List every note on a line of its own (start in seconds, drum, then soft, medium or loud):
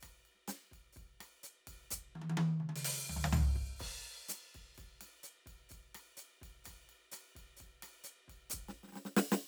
0.01 kick soft
0.01 cross-stick soft
0.01 hi-hat pedal soft
0.01 ride medium
0.26 ride soft
0.35 snare soft
0.48 snare soft
0.48 closed hi-hat medium
0.48 hi-hat pedal medium
0.48 ride soft
0.72 kick soft
0.72 ride soft
0.93 kick soft
0.93 hi-hat pedal soft
0.98 ride soft
1.02 kick soft
1.02 snare soft
1.21 cross-stick soft
1.21 snare soft
1.21 ride medium
1.44 hi-hat pedal medium
1.44 ride soft
1.68 kick soft
1.68 ride medium
1.91 kick soft
1.91 hi-hat pedal loud
1.97 kick soft
2.16 high tom soft
2.22 high tom medium
2.30 high tom medium
2.38 high tom loud
2.61 mid tom soft
2.70 mid tom medium
2.76 closed hi-hat medium
2.85 closed hi-hat loud
3.10 floor tom medium
3.17 floor tom medium
3.25 floor tom loud
3.33 floor tom loud
3.56 kick soft
3.62 kick soft
3.80 kick soft
3.80 crash medium
4.29 cross-stick soft
4.29 snare soft
4.29 hi-hat pedal loud
4.29 ride medium
4.55 kick soft
4.55 ride soft
4.75 kick soft
4.75 hi-hat pedal soft
4.75 ride soft
4.84 kick soft
5.02 snare soft
5.02 ride medium
5.24 hi-hat pedal medium
5.24 ride soft
5.47 kick soft
5.47 ride soft
5.70 kick soft
5.70 hi-hat pedal soft
5.70 ride soft
5.95 cross-stick soft
5.95 snare soft
5.95 ride medium
6.18 hi-hat pedal medium
6.18 ride soft
6.42 kick soft
6.42 ride soft
6.65 kick soft
6.65 cross-stick soft
6.65 hi-hat pedal soft
6.65 ride medium
6.90 ride soft
7.12 cross-stick soft
7.12 hi-hat pedal medium
7.12 ride medium
7.36 kick soft
7.36 ride soft
7.57 kick soft
7.57 hi-hat pedal soft
7.57 ride soft
7.83 cross-stick soft
7.83 ride medium
8.05 hi-hat pedal medium
8.05 ride soft
8.29 kick soft
8.29 ride soft
8.51 kick soft
8.51 hi-hat pedal loud
8.51 ride medium
8.59 kick soft
8.69 snare soft
8.84 snare soft
8.89 snare soft
8.93 snare soft
8.96 snare soft
9.06 snare soft
9.17 snare loud
9.33 snare loud